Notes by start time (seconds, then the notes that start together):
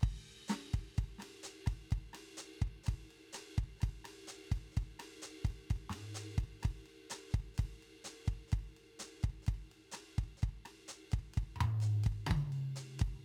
0.01 kick, crash
0.49 snare, hi-hat pedal, ride
0.74 kick, ride
0.79 kick
0.95 kick, hi-hat pedal, ride
1.04 kick
1.19 cross-stick, snare, ride
1.44 hi-hat pedal, ride
1.67 kick, cross-stick, ride
1.73 kick
1.91 kick, ride
1.98 kick
2.13 cross-stick, snare, ride
2.38 hi-hat pedal
2.62 kick, ride
2.68 kick
2.84 cross-stick, hi-hat pedal, ride
2.89 kick
2.94 kick
3.11 ride
3.33 cross-stick, hi-hat pedal, ride
3.58 kick, ride
3.64 kick
3.78 cross-stick, hi-hat pedal
3.82 kick, ride
3.89 kick
4.05 cross-stick, ride
4.28 hi-hat pedal, ride
4.52 kick, ride
4.57 kick
4.72 hi-hat pedal
4.77 kick, ride
4.83 kick
4.99 cross-stick, snare, ride
5.22 hi-hat pedal, ride
5.45 kick, ride
5.50 kick
5.71 kick, ride
5.76 kick
5.90 snare, mid tom, ride
6.15 hi-hat pedal, ride
6.38 kick, ride
6.44 kick
6.60 cross-stick, snare, hi-hat pedal, ride
6.65 kick
6.71 kick
6.86 ride
7.10 cross-stick, snare, hi-hat pedal, ride
7.31 kick, hi-hat pedal
7.35 ride
7.40 kick
7.55 hi-hat pedal, ride
7.59 kick
7.65 kick
7.83 ride
8.05 snare, hi-hat pedal, ride
8.26 kick, hi-hat pedal, ride
8.33 kick
8.48 hi-hat pedal
8.52 kick, ride
8.59 kick
8.77 ride
9.00 snare, hi-hat pedal, ride
9.21 kick, hi-hat pedal, ride
9.30 kick
9.43 hi-hat pedal
9.47 kick, snare, ride
9.54 kick
9.72 ride
9.92 cross-stick, snare, hi-hat pedal, ride
10.19 kick, ride
10.24 kick
10.38 hi-hat pedal
10.43 kick, ride
10.49 kick
10.65 cross-stick, snare, ride
10.88 hi-hat pedal, ride
11.11 kick, hi-hat pedal, ride
11.19 kick
11.32 hi-hat pedal, ride
11.38 kick
11.43 kick
11.56 mid tom
11.61 mid tom, ride
11.81 hi-hat pedal, ride
12.04 kick, ride
12.12 kick
12.27 high tom
12.31 kick, high tom
12.37 kick
12.53 ride bell
12.76 hi-hat pedal, ride
12.99 kick, hi-hat pedal, ride
13.08 kick
13.16 mid tom